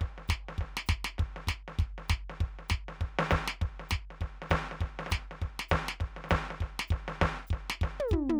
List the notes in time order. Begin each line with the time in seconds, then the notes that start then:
0.01 kick, snare
0.18 snare
0.28 kick, snare, hi-hat pedal
0.49 snare
0.58 kick, snare
0.77 snare
0.86 kick, snare, hi-hat pedal
1.04 snare
1.18 kick, snare
1.36 snare
1.47 kick, snare, hi-hat pedal
1.68 snare
1.79 kick, snare
1.98 snare
2.08 kick, snare, hi-hat pedal
2.30 snare
2.41 kick, snare
2.59 snare
2.69 kick, snare, hi-hat pedal
2.88 snare
3.01 kick, snare
3.19 snare
3.30 kick, snare, hi-hat pedal
3.48 snare
3.61 kick, snare
3.80 snare
3.89 kick, snare, hi-hat pedal
4.11 snare
4.21 kick, snare
4.42 snare
4.50 kick, snare, hi-hat pedal
4.71 snare
4.81 kick, snare
4.99 snare
5.06 snare, hi-hat pedal
5.12 kick, snare
5.31 snare
5.42 kick, snare
5.59 snare
5.68 kick, snare, hi-hat pedal
5.88 snare
6.00 kick, snare
6.17 snare
6.24 snare
6.29 kick, snare, hi-hat pedal
6.50 snare
6.61 kick, snare
6.79 snare
6.87 kick, hi-hat pedal
6.92 snare
7.08 snare
7.21 kick, snare
7.47 kick, hi-hat pedal
7.53 snare
7.70 snare
7.81 kick, snare
8.00 high tom
8.08 kick, hi-hat pedal
8.12 floor tom
8.29 floor tom